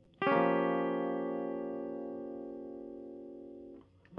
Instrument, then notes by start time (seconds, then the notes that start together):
electric guitar
0.22 G4
0.27 C#4
0.32 A#3
0.36 F3